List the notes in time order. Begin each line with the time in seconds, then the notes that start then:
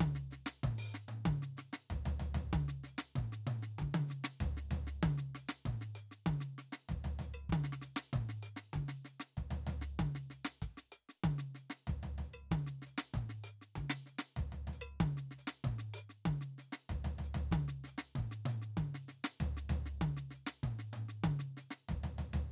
0.01 kick, high tom
0.07 kick
0.15 snare
0.31 snare, hi-hat pedal
0.47 snare
0.64 kick, mid tom
0.71 kick
0.79 closed hi-hat
0.95 snare, hi-hat pedal
1.09 mid tom
1.26 kick, high tom
1.33 kick
1.43 snare
1.57 snare, hi-hat pedal
1.73 snare
1.91 kick, floor tom
1.98 kick
2.06 floor tom
2.20 floor tom, hi-hat pedal
2.35 floor tom
2.53 kick, high tom
2.61 kick
2.69 snare
2.84 snare, hi-hat pedal
2.99 snare
3.16 kick, mid tom
3.24 kick
3.33 snare
3.47 hi-hat pedal, mid tom
3.63 snare
3.79 kick, high tom
3.95 high tom
4.09 snare, hi-hat pedal
4.24 snare
4.41 kick, floor tom
4.48 kick
4.52 kick
4.57 snare
4.71 floor tom, hi-hat pedal
4.87 snare
5.03 kick, high tom
5.11 kick
5.14 kick, snare
5.35 snare, hi-hat pedal
5.49 snare
5.66 kick, mid tom
5.73 kick
5.82 snare
5.96 closed hi-hat, hi-hat pedal
6.12 snare
6.27 kick, high tom
6.34 kick
6.41 snare
6.59 snare, hi-hat pedal
6.73 snare
6.89 kick, floor tom
6.98 kick
7.05 floor tom
7.19 floor tom, hi-hat pedal
7.34 percussion
7.50 kick, high tom
7.57 kick
7.64 snare
7.73 snare
7.82 snare, hi-hat pedal
7.97 snare
8.14 kick, mid tom
8.29 snare
8.43 closed hi-hat, hi-hat pedal
8.57 snare
8.74 kick, high tom
8.89 snare
9.05 snare, hi-hat pedal
9.20 snare
9.38 kick, floor tom
9.51 floor tom
9.67 floor tom, hi-hat pedal
9.82 snare
10.00 kick, high tom
10.15 snare
10.31 snare, hi-hat pedal
10.45 snare
10.62 kick, closed hi-hat
10.78 snare
10.92 closed hi-hat, hi-hat pedal
11.09 snare
11.24 kick, high tom
11.39 snare
11.55 snare, hi-hat pedal
11.70 snare
11.88 kick, floor tom
12.03 floor tom
12.18 floor tom
12.24 hi-hat pedal
12.34 percussion
12.52 kick, high tom
12.67 snare
12.82 snare
12.86 hi-hat pedal
12.98 snare
13.14 kick, mid tom
13.25 kick
13.30 snare
13.44 closed hi-hat, hi-hat pedal
13.62 snare
13.76 kick, high tom
13.90 snare
14.06 snare, hi-hat pedal
14.19 snare
14.37 kick, floor tom
14.45 kick
14.53 floor tom
14.68 floor tom
14.73 hi-hat pedal
14.82 percussion
15.01 kick, high tom
15.18 snare
15.31 snare
15.39 hi-hat pedal
15.48 snare
15.65 kick, mid tom
15.79 snare
15.94 closed hi-hat
15.99 hi-hat pedal
16.10 snare
16.26 kick, high tom
16.33 kick
16.42 snare
16.59 snare, hi-hat pedal
16.73 snare
16.90 kick, floor tom
16.97 kick
17.05 floor tom
17.19 floor tom
17.24 hi-hat pedal
17.35 floor tom
17.52 kick, high tom
17.58 kick
17.68 snare
17.84 snare, hi-hat pedal
17.98 snare
18.16 kick, mid tom
18.25 kick
18.32 snare
18.46 hi-hat pedal, mid tom
18.62 snare
18.77 kick, high tom
18.95 snare
19.09 snare, hi-hat pedal
19.25 snare
19.41 kick, floor tom
19.57 snare
19.70 floor tom, hi-hat pedal
19.86 snare
20.02 kick, high tom
20.08 kick
20.17 snare
20.31 snare, hi-hat pedal
20.47 snare
20.64 kick, mid tom
20.79 snare
20.93 hi-hat pedal, mid tom
21.09 snare
21.24 kick, high tom
21.40 snare
21.57 snare, hi-hat pedal
21.71 snare
21.89 kick, floor tom
21.97 kick
22.04 floor tom
22.19 floor tom
22.23 hi-hat pedal
22.34 floor tom